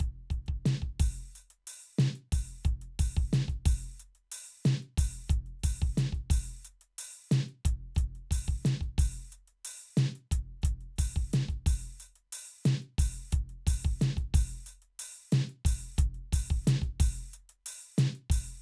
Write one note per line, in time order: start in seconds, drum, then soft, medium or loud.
0.00 kick medium
0.00 closed hi-hat medium
0.30 kick medium
0.30 closed hi-hat soft
0.46 closed hi-hat soft
0.46 kick soft
0.66 closed hi-hat medium
0.66 snare loud
0.82 kick soft
0.82 closed hi-hat soft
1.00 open hi-hat loud
1.00 kick medium
1.35 open hi-hat medium
1.35 hi-hat pedal medium
1.50 closed hi-hat soft
1.67 open hi-hat loud
1.98 closed hi-hat medium
1.98 snare loud
1.98 hi-hat pedal medium
2.15 closed hi-hat soft
2.32 open hi-hat loud
2.32 kick medium
2.63 closed hi-hat medium
2.63 kick medium
2.63 hi-hat pedal medium
2.81 closed hi-hat soft
2.99 open hi-hat loud
2.99 kick medium
3.17 kick medium
3.32 closed hi-hat medium
3.32 snare loud
3.32 hi-hat pedal medium
3.48 closed hi-hat soft
3.48 kick soft
3.65 open hi-hat loud
3.65 kick medium
3.99 open hi-hat medium
3.99 hi-hat pedal medium
4.15 closed hi-hat soft
4.32 open hi-hat loud
4.64 closed hi-hat medium
4.64 snare loud
4.64 hi-hat pedal medium
4.82 closed hi-hat soft
4.98 open hi-hat loud
4.98 kick medium
5.28 closed hi-hat medium
5.28 kick medium
5.28 hi-hat pedal medium
5.46 closed hi-hat soft
5.59 hi-hat pedal soft
5.63 open hi-hat loud
5.63 kick medium
5.82 kick medium
5.95 closed hi-hat medium
5.95 snare loud
5.95 hi-hat pedal medium
6.12 kick soft
6.12 closed hi-hat soft
6.30 open hi-hat loud
6.30 kick medium
6.65 open hi-hat medium
6.65 hi-hat pedal medium
6.81 closed hi-hat soft
6.98 open hi-hat loud
7.29 closed hi-hat medium
7.29 snare loud
7.29 hi-hat pedal medium
7.48 closed hi-hat soft
7.65 open hi-hat loud
7.65 kick medium
7.95 closed hi-hat medium
7.95 kick medium
7.95 hi-hat pedal medium
8.15 closed hi-hat soft
8.31 open hi-hat loud
8.31 kick medium
8.48 kick medium
8.63 closed hi-hat medium
8.63 snare loud
8.63 hi-hat pedal medium
8.81 kick soft
8.81 closed hi-hat soft
8.98 open hi-hat loud
8.98 kick medium
9.32 open hi-hat medium
9.32 hi-hat pedal medium
9.48 closed hi-hat soft
9.65 open hi-hat loud
9.96 closed hi-hat medium
9.96 snare loud
9.96 hi-hat pedal medium
10.15 closed hi-hat soft
10.31 open hi-hat loud
10.31 kick medium
10.62 closed hi-hat loud
10.62 kick medium
10.62 hi-hat pedal medium
10.81 closed hi-hat soft
10.96 open hi-hat loud
10.96 kick medium
10.96 hi-hat pedal soft
11.16 kick medium
11.30 closed hi-hat loud
11.30 snare loud
11.30 hi-hat pedal medium
11.48 kick soft
11.48 closed hi-hat soft
11.66 open hi-hat loud
11.66 kick medium
12.00 open hi-hat medium
12.00 hi-hat pedal medium
12.15 closed hi-hat soft
12.32 open hi-hat loud
12.63 closed hi-hat medium
12.63 snare loud
12.63 hi-hat pedal medium
12.82 closed hi-hat soft
12.98 open hi-hat loud
12.98 kick medium
13.30 closed hi-hat loud
13.30 kick medium
13.30 hi-hat pedal medium
13.49 closed hi-hat soft
13.67 open hi-hat loud
13.67 kick medium
13.85 kick medium
13.99 closed hi-hat medium
13.99 snare loud
13.99 hi-hat pedal medium
14.17 kick medium
14.17 closed hi-hat soft
14.34 open hi-hat loud
14.34 kick medium
14.66 open hi-hat medium
14.66 hi-hat pedal medium
14.82 closed hi-hat soft
14.99 open hi-hat loud
15.30 closed hi-hat medium
15.30 snare loud
15.30 hi-hat pedal medium
15.49 closed hi-hat soft
15.65 open hi-hat loud
15.65 kick medium
15.96 closed hi-hat loud
15.96 kick medium
15.96 hi-hat pedal medium
16.14 closed hi-hat soft
16.33 open hi-hat loud
16.33 kick medium
16.50 kick medium
16.64 closed hi-hat loud
16.64 snare loud
16.64 hi-hat pedal medium
16.82 kick soft
16.82 closed hi-hat soft
17.00 open hi-hat loud
17.00 kick medium
17.33 open hi-hat medium
17.33 hi-hat pedal medium
17.49 closed hi-hat medium
17.66 open hi-hat loud
17.96 closed hi-hat loud
17.96 snare loud
17.96 hi-hat pedal medium
18.15 closed hi-hat soft
18.30 open hi-hat loud
18.30 kick medium